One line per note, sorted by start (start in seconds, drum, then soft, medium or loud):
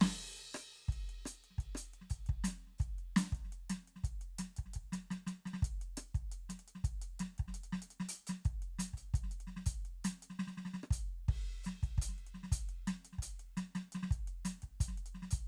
0.01 snare loud
0.01 crash medium
0.06 cross-stick medium
0.37 closed hi-hat medium
0.55 open hi-hat medium
0.55 cross-stick medium
0.71 hi-hat pedal soft
0.77 closed hi-hat soft
0.89 kick soft
0.89 closed hi-hat soft
1.10 closed hi-hat soft
1.26 closed hi-hat loud
1.26 cross-stick medium
1.45 closed hi-hat soft
1.51 snare soft
1.59 kick soft
1.59 closed hi-hat soft
1.76 closed hi-hat loud
1.76 cross-stick medium
1.94 closed hi-hat soft
2.02 snare soft
2.11 closed hi-hat medium
2.11 kick soft
2.27 kick soft
2.27 closed hi-hat soft
2.45 open hi-hat loud
2.45 cross-stick soft
2.45 snare medium
2.67 snare soft
2.74 snare soft
2.79 kick soft
2.79 closed hi-hat soft
2.79 hi-hat pedal soft
2.99 closed hi-hat soft
3.17 closed hi-hat loud
3.17 snare medium
3.33 kick medium
3.33 closed hi-hat soft
3.45 snare soft
3.53 closed hi-hat soft
3.70 snare medium
3.70 closed hi-hat loud
3.88 closed hi-hat soft
3.96 snare soft
4.04 kick soft
4.04 closed hi-hat medium
4.22 closed hi-hat soft
4.39 snare soft
4.39 closed hi-hat loud
4.57 kick soft
4.57 closed hi-hat medium
4.66 snare soft
4.74 kick soft
4.74 closed hi-hat medium
4.93 snare soft
4.93 closed hi-hat medium
5.11 snare soft
5.11 closed hi-hat medium
5.27 snare soft
5.27 closed hi-hat medium
5.46 snare soft
5.46 closed hi-hat soft
5.54 snare soft
5.63 kick medium
5.63 closed hi-hat medium
5.82 closed hi-hat soft
5.98 cross-stick medium
5.98 closed hi-hat loud
6.15 kick soft
6.15 closed hi-hat soft
6.32 closed hi-hat medium
6.50 snare soft
6.50 closed hi-hat medium
6.60 closed hi-hat soft
6.69 closed hi-hat medium
6.76 snare soft
6.85 kick soft
6.85 closed hi-hat medium
7.02 closed hi-hat medium
7.20 snare medium
7.20 closed hi-hat medium
7.39 kick soft
7.39 closed hi-hat soft
7.49 snare soft
7.55 closed hi-hat medium
7.64 closed hi-hat medium
7.73 snare medium
7.83 closed hi-hat medium
7.91 closed hi-hat medium
8.00 snare soft
8.09 closed hi-hat loud
8.28 closed hi-hat medium
8.28 snare soft
8.46 kick medium
8.46 closed hi-hat medium
8.63 closed hi-hat soft
8.79 closed hi-hat loud
8.79 snare medium
8.94 closed hi-hat medium
8.94 kick soft
9.14 kick medium
9.14 closed hi-hat medium
9.24 snare soft
9.32 closed hi-hat medium
9.41 closed hi-hat soft
9.48 snare soft
9.57 snare soft
9.67 closed hi-hat loud
9.67 kick soft
9.86 closed hi-hat soft
10.05 closed hi-hat loud
10.05 snare medium
10.23 closed hi-hat medium
10.31 snare soft
10.40 snare medium
10.48 snare soft
10.58 snare soft
10.66 snare soft
10.74 snare soft
10.84 cross-stick medium
10.91 closed hi-hat medium
10.91 kick medium
11.29 kick medium
11.29 crash soft
11.64 closed hi-hat medium
11.64 snare medium
11.64 hi-hat pedal medium
11.83 kick soft
11.83 closed hi-hat soft
11.99 closed hi-hat loud
11.99 kick medium
12.09 snare soft
12.19 closed hi-hat soft
12.27 closed hi-hat soft
12.35 snare soft
12.44 snare soft
12.52 closed hi-hat loud
12.52 kick medium
12.70 closed hi-hat soft
12.88 snare medium
12.88 closed hi-hat medium
13.05 closed hi-hat medium
13.13 snare soft
13.19 closed hi-hat loud
13.19 kick soft
13.40 closed hi-hat soft
13.58 snare medium
13.58 closed hi-hat medium
13.76 snare medium
13.76 closed hi-hat medium
13.93 snare soft
13.93 closed hi-hat medium
14.03 snare soft
14.11 kick medium
14.11 closed hi-hat medium
14.28 closed hi-hat soft
14.46 closed hi-hat loud
14.46 snare medium
14.63 kick soft
14.63 closed hi-hat soft
14.81 closed hi-hat loud
14.81 kick medium
14.89 snare soft
14.98 closed hi-hat soft
15.07 closed hi-hat medium
15.15 snare soft
15.23 snare soft
15.31 closed hi-hat loud
15.31 kick soft